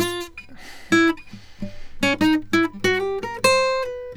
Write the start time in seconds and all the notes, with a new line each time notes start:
0.00 F4
0.93 E4
2.04 C#4
2.22 D#4
2.55 E4
2.85 F#4
3.00 G4
3.25 A#4
3.46 C5
3.84 B4